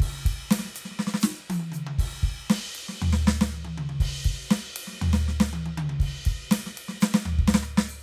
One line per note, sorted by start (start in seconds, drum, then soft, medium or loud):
0.01 kick medium
0.01 crash medium
0.27 kick medium
0.27 ride medium
0.52 snare loud
0.52 ride loud
0.60 snare medium
0.66 snare soft
0.76 hi-hat pedal loud
0.76 ride medium
0.86 snare soft
0.92 snare soft
1.00 snare medium
1.08 snare medium
1.15 snare medium
1.22 snare loud
1.22 hi-hat pedal loud
1.51 hi-hat pedal medium
1.51 high tom loud
1.61 high tom medium
1.73 hi-hat pedal medium
1.73 mid tom medium
1.88 mid tom medium
2.00 kick medium
2.00 crash medium
2.24 kick medium
2.51 snare loud
2.51 ride loud
2.76 ride medium
2.90 snare medium
2.94 snare soft
3.03 floor tom loud
3.14 snare medium
3.28 snare loud
3.42 snare loud
3.54 high tom medium
3.66 high tom medium
3.79 mid tom loud
3.90 mid tom medium
4.01 kick medium
4.01 ride loud
4.26 kick medium
4.26 ride medium
4.49 kick soft
4.49 snare loud
4.49 ride medium
4.77 ride loud
4.88 snare soft
4.94 snare soft
4.98 snare soft
5.03 floor tom loud
5.14 snare loud
5.29 snare medium
5.41 snare loud
5.54 high tom loud
5.67 high tom medium
5.79 mid tom loud
5.91 mid tom medium
6.01 kick medium
6.01 ride medium
6.27 kick medium
6.27 ride medium
6.48 kick soft
6.52 snare loud
6.52 ride loud
6.68 snare medium
6.79 ride medium
6.90 snare medium
6.95 snare soft
7.02 snare loud
7.02 hi-hat pedal loud
7.15 snare loud
7.27 floor tom loud
7.40 kick medium
7.49 snare loud
7.55 snare loud
7.64 cross-stick medium
7.79 snare loud
7.89 open hi-hat medium